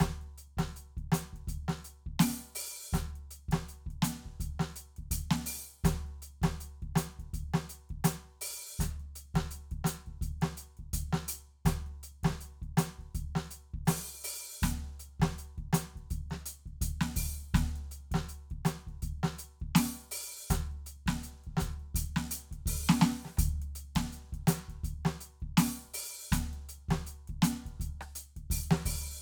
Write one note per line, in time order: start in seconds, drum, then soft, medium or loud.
0.00 closed hi-hat medium
0.00 kick medium
0.00 snare loud
0.21 closed hi-hat soft
0.38 closed hi-hat medium
0.57 kick medium
0.57 snare medium
0.57 closed hi-hat medium
0.76 closed hi-hat medium
0.97 kick medium
0.97 closed hi-hat soft
1.12 closed hi-hat loud
1.12 snare loud
1.33 kick soft
1.33 closed hi-hat soft
1.47 closed hi-hat medium
1.47 kick medium
1.68 snare medium
1.68 closed hi-hat soft
1.84 closed hi-hat medium
2.06 kick soft
2.19 open hi-hat loud
2.19 snare loud
2.55 open hi-hat loud
2.93 open hi-hat loud
2.93 kick medium
2.93 snare medium
2.93 hi-hat pedal soft
3.15 closed hi-hat soft
3.31 closed hi-hat medium
3.48 kick medium
3.48 snare loud
3.48 closed hi-hat medium
3.68 closed hi-hat medium
3.86 kick medium
3.86 closed hi-hat soft
4.02 closed hi-hat loud
4.02 snare loud
4.25 kick soft
4.40 closed hi-hat medium
4.40 kick medium
4.59 snare medium
4.59 closed hi-hat soft
4.76 closed hi-hat medium
4.96 kick soft
4.96 closed hi-hat soft
5.11 closed hi-hat loud
5.11 kick medium
5.31 snare loud
5.46 open hi-hat loud
5.84 closed hi-hat medium
5.84 kick medium
5.84 snare loud
5.84 hi-hat pedal soft
6.06 closed hi-hat soft
6.22 closed hi-hat medium
6.42 kick medium
6.42 snare loud
6.42 closed hi-hat medium
6.60 closed hi-hat medium
6.82 kick medium
6.82 closed hi-hat soft
6.96 closed hi-hat loud
6.96 snare loud
7.19 kick soft
7.19 closed hi-hat soft
7.33 closed hi-hat medium
7.33 kick medium
7.54 snare loud
7.54 closed hi-hat soft
7.69 closed hi-hat medium
7.89 kick medium
7.89 closed hi-hat soft
8.04 open hi-hat loud
8.04 snare loud
8.41 open hi-hat loud
8.46 kick soft
8.62 open hi-hat soft
8.79 closed hi-hat loud
8.79 kick medium
8.79 snare medium
8.79 hi-hat pedal soft
9.00 closed hi-hat soft
9.15 closed hi-hat medium
9.34 kick medium
9.34 snare loud
9.34 closed hi-hat soft
9.51 closed hi-hat medium
9.71 kick medium
9.71 closed hi-hat soft
9.84 closed hi-hat loud
9.84 snare loud
10.06 kick soft
10.06 closed hi-hat soft
10.21 closed hi-hat medium
10.21 kick medium
10.41 snare loud
10.41 closed hi-hat soft
10.57 closed hi-hat medium
10.77 kick soft
10.77 closed hi-hat soft
10.93 closed hi-hat loud
10.93 kick medium
11.13 snare loud
11.28 open hi-hat loud
11.32 kick soft
11.65 open hi-hat loud
11.65 kick medium
11.65 snare loud
11.65 hi-hat pedal soft
11.86 closed hi-hat soft
12.03 closed hi-hat medium
12.23 kick medium
12.23 snare loud
12.23 closed hi-hat soft
12.29 snare medium
12.41 closed hi-hat medium
12.62 kick soft
12.62 closed hi-hat soft
12.77 closed hi-hat loud
12.77 snare loud
12.99 kick soft
12.99 closed hi-hat soft
13.15 closed hi-hat medium
13.15 kick medium
13.35 snare medium
13.35 closed hi-hat soft
13.51 closed hi-hat medium
13.72 kick medium
13.72 closed hi-hat soft
13.85 open hi-hat loud
13.85 snare loud
13.85 hi-hat pedal soft
14.24 open hi-hat loud
14.62 open hi-hat loud
14.62 kick medium
14.62 snare loud
14.62 hi-hat pedal soft
14.84 closed hi-hat soft
14.99 closed hi-hat medium
15.20 kick medium
15.20 snare loud
15.20 closed hi-hat soft
15.38 closed hi-hat medium
15.58 kick medium
15.58 closed hi-hat soft
15.73 closed hi-hat loud
15.73 snare loud
15.96 kick soft
15.96 closed hi-hat soft
16.10 closed hi-hat medium
16.10 kick medium
16.30 snare medium
16.30 closed hi-hat soft
16.46 closed hi-hat loud
16.66 kick soft
16.66 closed hi-hat soft
16.81 closed hi-hat loud
16.81 kick medium
17.01 snare loud
17.16 open hi-hat loud
17.16 kick medium
17.54 open hi-hat medium
17.54 kick loud
17.54 snare loud
17.54 hi-hat pedal soft
17.76 closed hi-hat soft
17.91 closed hi-hat medium
18.11 kick medium
18.11 snare loud
18.11 closed hi-hat soft
18.29 closed hi-hat medium
18.50 kick medium
18.50 closed hi-hat soft
18.65 closed hi-hat medium
18.65 snare loud
18.87 kick soft
18.87 closed hi-hat soft
19.02 closed hi-hat medium
19.02 kick medium
19.23 snare loud
19.23 closed hi-hat soft
19.38 closed hi-hat medium
19.60 kick medium
19.60 closed hi-hat soft
19.75 open hi-hat loud
19.75 snare loud
20.11 open hi-hat loud
20.48 closed hi-hat loud
20.48 kick medium
20.48 snare medium
20.48 hi-hat pedal soft
20.71 closed hi-hat soft
20.86 closed hi-hat medium
21.06 kick medium
21.06 snare loud
21.06 closed hi-hat soft
21.23 closed hi-hat medium
21.44 kick soft
21.44 closed hi-hat soft
21.57 closed hi-hat medium
21.57 snare medium
21.61 kick medium
21.79 closed hi-hat soft
21.95 closed hi-hat loud
21.95 kick medium
22.16 snare medium
22.31 closed hi-hat loud
22.51 kick soft
22.51 closed hi-hat soft
22.66 open hi-hat loud
22.66 kick medium
22.89 snare loud
23.01 kick soft
23.01 snare loud
23.25 snare soft
23.37 closed hi-hat loud
23.37 kick loud
23.37 cross-stick soft
23.37 hi-hat pedal soft
23.62 closed hi-hat soft
23.75 closed hi-hat medium
23.95 kick medium
23.95 snare loud
23.95 closed hi-hat medium
24.12 closed hi-hat medium
24.32 kick medium
24.32 closed hi-hat soft
24.47 closed hi-hat loud
24.47 snare loud
24.68 kick soft
24.68 closed hi-hat soft
24.84 closed hi-hat medium
24.84 kick medium
25.05 snare loud
25.05 closed hi-hat soft
25.20 closed hi-hat medium
25.40 kick medium
25.40 closed hi-hat soft
25.57 open hi-hat loud
25.57 snare loud
25.85 kick soft
25.94 open hi-hat loud
26.32 closed hi-hat loud
26.32 kick medium
26.32 snare loud
26.32 hi-hat pedal soft
26.53 closed hi-hat soft
26.69 closed hi-hat medium
26.89 kick medium
26.89 snare loud
26.89 closed hi-hat soft
27.06 closed hi-hat medium
27.27 kick medium
27.27 closed hi-hat soft
27.42 closed hi-hat loud
27.42 snare loud
27.66 kick soft
27.66 closed hi-hat soft
27.80 closed hi-hat medium
27.80 kick medium
28.01 cross-stick medium
28.15 closed hi-hat medium
28.36 kick soft
28.36 closed hi-hat soft
28.50 open hi-hat loud
28.50 kick medium
28.71 snare loud
28.85 open hi-hat loud
28.85 kick medium